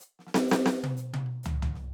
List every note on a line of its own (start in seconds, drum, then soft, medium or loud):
0.00 hi-hat pedal medium
0.19 snare soft
0.27 snare soft
0.34 snare loud
0.48 snare loud
0.48 hi-hat pedal medium
0.66 snare loud
0.84 high tom loud
0.97 snare soft
0.97 hi-hat pedal medium
1.14 high tom loud
1.26 cross-stick soft
1.43 floor tom loud
1.43 hi-hat pedal medium
1.62 floor tom loud
1.74 snare soft